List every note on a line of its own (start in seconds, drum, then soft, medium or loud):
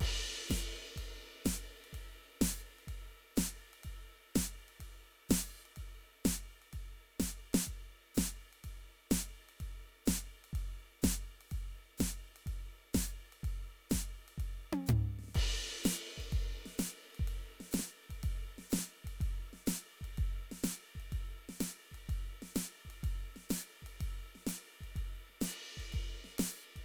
0.01 kick soft
0.01 ride loud
0.49 kick soft
0.49 snare medium
0.49 hi-hat pedal medium
0.49 ride loud
0.86 ride soft
0.97 kick soft
0.97 ride medium
1.45 kick soft
1.45 snare medium
1.45 hi-hat pedal loud
1.45 ride loud
1.85 ride medium
1.94 kick soft
1.94 ride medium
2.42 kick soft
2.42 snare loud
2.42 hi-hat pedal loud
2.42 ride loud
2.79 ride soft
2.88 kick soft
2.88 ride medium
3.37 kick soft
3.37 snare medium
3.37 hi-hat pedal medium
3.37 ride loud
3.74 ride medium
3.84 kick soft
3.84 ride medium
4.36 kick soft
4.36 snare medium
4.36 hi-hat pedal medium
4.36 ride loud
4.69 ride medium
4.80 kick soft
4.80 ride medium
5.29 kick soft
5.29 snare loud
5.29 hi-hat pedal loud
5.29 ride loud
5.66 ride medium
5.77 kick soft
5.77 ride medium
6.25 kick soft
6.25 snare medium
6.25 hi-hat pedal medium
6.25 ride loud
6.62 ride soft
6.74 kick soft
6.74 ride medium
7.20 kick soft
7.20 snare medium
7.20 hi-hat pedal medium
7.20 ride loud
7.54 snare loud
7.54 ride medium
7.67 kick soft
7.67 ride medium
8.15 kick soft
8.15 snare medium
8.15 hi-hat pedal loud
8.15 ride loud
8.53 ride medium
8.65 kick soft
8.65 ride medium
9.11 kick soft
9.11 snare loud
9.11 hi-hat pedal loud
9.11 ride loud
9.49 ride medium
9.58 kick soft
9.58 hi-hat pedal soft
9.58 ride medium
10.06 kick soft
10.06 snare medium
10.06 hi-hat pedal loud
10.06 ride loud
10.45 ride medium
10.54 kick soft
10.54 hi-hat pedal soft
10.54 ride medium
11.03 kick soft
11.03 snare loud
11.03 hi-hat pedal loud
11.03 ride loud
11.41 ride medium
11.47 hi-hat pedal soft
11.52 kick soft
11.52 ride medium
11.98 kick soft
11.98 snare medium
11.98 hi-hat pedal medium
11.98 ride loud
12.37 ride medium
12.47 kick soft
12.47 ride medium
12.94 kick soft
12.94 snare medium
12.94 hi-hat pedal medium
12.94 ride loud
13.33 ride medium
13.44 kick soft
13.44 ride medium
13.90 kick soft
13.90 snare medium
13.90 hi-hat pedal medium
13.90 ride loud
14.29 ride medium
14.38 kick soft
14.38 ride medium
14.73 high tom loud
14.87 floor tom loud
14.87 hi-hat pedal loud
15.19 snare soft
15.24 snare soft
15.29 snare soft
15.35 kick medium
15.35 ride loud
15.84 snare medium
15.84 hi-hat pedal loud
15.84 ride medium
16.18 kick soft
16.18 ride medium
16.33 kick soft
16.33 ride medium
16.66 snare soft
16.78 snare medium
16.78 hi-hat pedal medium
16.78 ride loud
17.15 ride medium
17.20 kick soft
17.28 ride medium
17.61 snare soft
17.72 snare medium
17.72 hi-hat pedal loud
17.72 ride loud
17.80 snare soft
18.10 kick soft
18.10 ride medium
18.21 kick soft
18.21 hi-hat pedal soft
18.21 ride loud
18.59 snare soft
18.70 snare medium
18.70 hi-hat pedal loud
18.70 ride loud
18.79 snare soft
19.05 kick soft
19.05 ride medium
19.21 kick soft
19.21 ride medium
19.54 snare soft
19.67 snare medium
19.67 hi-hat pedal loud
19.67 ride loud
20.02 kick soft
20.02 ride medium
20.18 kick soft
20.18 ride medium
20.52 snare soft
20.63 snare medium
20.63 hi-hat pedal loud
20.63 ride loud
20.96 kick soft
21.00 ride soft
21.13 kick soft
21.13 ride medium
21.49 snare soft
21.60 snare medium
21.60 hi-hat pedal loud
21.60 ride loud
21.92 kick soft
21.92 ride medium
22.09 kick soft
22.09 ride medium
22.43 snare soft
22.55 snare medium
22.55 hi-hat pedal loud
22.55 ride loud
22.86 kick soft
22.91 ride medium
23.04 kick soft
23.04 ride medium
23.37 snare soft
23.50 snare medium
23.50 hi-hat pedal loud
23.50 ride loud
23.83 kick soft
23.83 ride medium
24.01 kick soft
24.01 ride loud
24.36 snare soft
24.47 snare medium
24.47 hi-hat pedal loud
24.47 ride loud
24.81 kick soft
24.81 ride soft
24.96 kick soft
24.96 ride medium
25.30 snare soft
25.41 snare medium
25.41 hi-hat pedal loud
25.41 ride medium
25.78 kick soft
25.78 ride medium
25.93 kick soft
25.93 ride medium
26.25 snare soft
26.39 snare medium
26.39 hi-hat pedal loud
26.39 ride loud
26.76 kick soft
26.76 ride medium